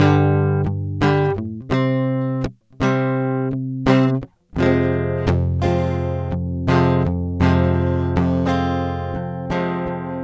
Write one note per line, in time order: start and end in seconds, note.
0.00 0.66 G2
0.00 0.69 D3
0.00 0.68 G3
0.67 1.52 G2
0.85 1.36 D3
1.04 1.40 G3
1.40 1.73 A2
1.73 2.47 C3
1.73 2.50 C4
2.83 3.53 C3
2.83 3.54 G3
2.83 3.89 C4
3.53 3.88 C3
3.88 4.24 C3
3.88 4.19 C4
4.58 5.28 F2
4.58 5.28 C3
4.62 5.29 F3
4.62 5.32 G#3
4.68 5.32 C4
5.29 6.32 F2
5.29 5.68 C3
5.29 5.44 F3
5.63 6.34 F3
5.63 6.35 G#3
5.63 6.38 C4
5.63 6.38 F4
5.68 6.33 C3
6.33 7.08 F2
6.33 6.70 C3
6.70 7.08 C3
6.70 7.08 F3
6.70 7.09 G#3
6.70 7.11 C4
7.08 7.42 F2
7.42 8.18 F2
7.42 8.19 C3
7.42 8.21 F3
7.42 8.21 G#3
7.47 8.21 C4
8.19 9.16 F2
8.19 9.51 C3
8.47 9.19 G#3
8.47 9.54 C4
8.47 9.49 F4
9.17 9.88 F2
9.52 9.88 C3
9.52 10.24 F3
9.52 10.14 G#3
9.52 10.24 C4
9.88 10.24 F2
9.88 10.24 C3